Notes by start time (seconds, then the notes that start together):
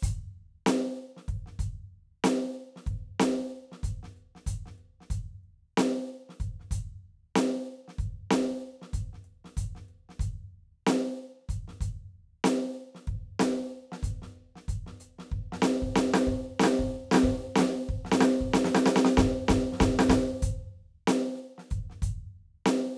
0.01 closed hi-hat, kick, hi-hat pedal
0.66 closed hi-hat, snare
0.95 snare, closed hi-hat
1.16 snare
1.28 kick, closed hi-hat
1.46 snare
1.59 closed hi-hat, kick
2.24 closed hi-hat, snare
2.76 snare
2.86 kick, closed hi-hat
3.20 closed hi-hat, snare
3.72 snare
3.83 closed hi-hat, kick
4.03 snare
4.15 closed hi-hat
4.35 snare
4.46 closed hi-hat, kick
4.66 snare
4.78 closed hi-hat
5.00 snare
5.10 closed hi-hat, kick
5.43 closed hi-hat
5.77 closed hi-hat, snare
6.06 snare, closed hi-hat
6.29 snare
6.40 closed hi-hat, kick
6.60 snare
6.71 closed hi-hat, kick
7.36 closed hi-hat, snare
7.88 snare
7.98 closed hi-hat, kick
8.31 closed hi-hat, snare
8.56 snare
8.63 closed hi-hat
8.82 snare
8.93 closed hi-hat, kick
9.13 snare
9.24 closed hi-hat
9.44 snare
9.57 closed hi-hat, kick
9.75 snare
9.88 closed hi-hat
10.09 snare
10.19 closed hi-hat, kick
10.87 closed hi-hat, snare
10.90 snare
11.40 snare
11.49 closed hi-hat, kick
11.68 snare
11.80 closed hi-hat, kick
12.44 closed hi-hat, snare
12.76 closed hi-hat
12.95 snare
13.07 kick, closed hi-hat
13.11 crash
13.39 closed hi-hat, snare
13.70 closed hi-hat
13.92 snare
14.03 closed hi-hat, kick
14.22 snare
14.36 closed hi-hat
14.55 snare
14.68 closed hi-hat, kick
14.86 snare
15.00 closed hi-hat
15.18 snare
15.31 kick
15.52 snare
15.62 snare
15.82 kick
15.96 snare
16.14 snare
16.27 kick
16.59 snare
16.63 snare
16.79 kick
17.11 snare
17.14 snare
17.23 kick
17.56 snare
17.59 snare
17.89 kick
18.05 snare
18.12 snare
18.20 snare
18.40 kick
18.53 snare
18.64 snare
18.75 snare
18.86 snare
18.96 snare
19.05 snare
19.13 kick, snare
19.17 kick
19.48 kick, snare
19.72 snare
19.77 snare
19.80 kick, snare
19.99 snare
20.09 kick, snare
20.42 closed hi-hat, kick
21.07 closed hi-hat, snare
21.34 snare
21.39 closed hi-hat
21.58 snare
21.70 closed hi-hat, kick
21.90 snare
22.02 closed hi-hat, kick
22.66 closed hi-hat, snare